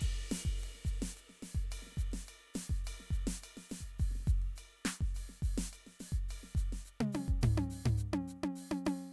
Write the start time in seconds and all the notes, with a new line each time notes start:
0.01 kick, hi-hat pedal, crash
0.30 snare, hi-hat pedal
0.45 kick, snare
0.57 hi-hat pedal
0.64 ride
0.75 snare
0.85 kick, hi-hat pedal, ride
1.00 snare, ride
1.16 hi-hat pedal, ride
1.29 snare
1.43 snare, hi-hat pedal, ride
1.55 kick, ride
1.71 hi-hat pedal, ride bell
1.82 snare
1.87 snare
1.92 snare
1.97 kick, hi-hat pedal, ride
2.12 snare, ride
2.26 hi-hat pedal, ride bell
2.54 snare, hi-hat pedal, ride
2.70 kick, snare
2.84 hi-hat pedal, ride bell
3.00 snare
3.11 kick, hi-hat pedal, ride
3.27 snare, ride
3.42 hi-hat pedal, ride bell
3.57 snare
3.69 snare, hi-hat pedal, ride
3.81 kick, ride
3.99 kick, hi-hat pedal, ride
4.11 snare
4.15 snare
4.20 snare
4.23 snare
4.27 kick, hi-hat pedal, ride
4.42 ride
4.56 hi-hat pedal, ride bell
4.85 snare, hi-hat pedal, ride
5.01 kick, snare
5.15 hi-hat pedal, ride bell
5.29 snare
5.42 kick, hi-hat pedal, ride
5.57 snare, ride
5.72 hi-hat pedal, ride bell
5.87 snare
6.00 snare, hi-hat pedal, ride
6.12 kick, ride
6.29 hi-hat pedal, ride bell
6.43 snare
6.55 kick, hi-hat pedal, ride
6.73 snare
6.85 hi-hat pedal
7.01 mid tom
7.13 hi-hat pedal, high tom
7.28 kick
7.41 floor tom, hi-hat pedal
7.58 high tom
7.70 hi-hat pedal
7.86 floor tom
7.98 hi-hat pedal
8.13 high tom
8.28 hi-hat pedal
8.44 high tom
8.56 hi-hat pedal
8.71 high tom
8.86 hi-hat pedal, high tom